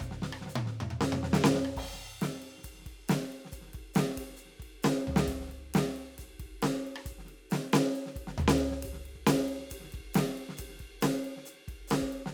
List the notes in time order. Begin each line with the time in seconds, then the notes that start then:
0.01 kick, hi-hat pedal, mid tom
0.09 kick, snare
0.23 snare
0.33 cross-stick
0.42 snare
0.47 snare, hi-hat pedal
0.56 high tom
0.67 snare
0.81 mid tom
0.91 mid tom
1.02 snare
1.13 mid tom
1.24 snare
1.45 snare
1.55 snare
1.66 cross-stick
1.77 kick, crash
1.83 kick, snare
1.88 kick
1.94 snare
1.99 cross-stick
2.22 snare, hi-hat pedal, ride
2.43 ride
2.59 snare
2.64 kick, hi-hat pedal, ride
2.75 snare
2.79 snare
2.83 snare
2.87 kick, ride
3.09 snare, hi-hat pedal, ride
3.33 ride
3.46 snare
3.52 kick, hi-hat pedal, ride
3.62 snare
3.68 snare
3.74 kick, ride
3.81 kick
3.94 snare, hi-hat pedal, ride
4.18 kick, ride
4.30 snare
4.37 hi-hat pedal, ride
4.46 snare
4.50 snare
4.53 snare
4.56 snare
4.60 kick, ride
4.83 snare, hi-hat pedal, ride
5.08 floor tom
5.17 snare
5.28 kick, hi-hat pedal, ride
5.34 kick
5.42 snare
5.48 snare, ride
5.75 snare, hi-hat pedal, ride
5.97 ride
6.12 snare
6.19 kick, snare, hi-hat pedal, ride
6.26 snare
6.30 snare
6.40 kick, ride
6.46 kick
6.63 snare, hi-hat pedal, ride
6.88 ride
6.97 cross-stick
7.06 kick, hi-hat pedal, ride
7.13 kick
7.19 snare
7.26 snare, ride
7.51 snare, hi-hat pedal, ride
7.74 snare, ride
7.95 hi-hat pedal, ride
8.07 snare
8.16 kick, ride
8.23 kick
8.28 snare
8.39 floor tom, hi-hat pedal
8.49 snare
8.59 ride
8.72 snare
8.83 kick, hi-hat pedal, ride
8.94 snare
9.06 ride
9.16 kick
9.27 snare, hi-hat pedal, ride
9.49 ride
9.59 snare
9.71 kick, hi-hat pedal, ride
9.81 snare
9.84 snare
9.93 kick, ride
10.01 kick
10.14 snare, hi-hat pedal, ride
10.38 ride
10.50 snare
10.58 kick, hi-hat pedal, ride
10.69 snare
10.75 snare
10.80 kick, ride
11.02 snare, hi-hat pedal, ride
11.25 ride
11.37 snare
11.46 hi-hat pedal, ride
11.54 snare
11.60 snare
11.64 snare
11.69 kick, ride
11.75 kick
11.88 snare, hi-hat pedal, ride
12.02 kick
12.13 ride
12.27 snare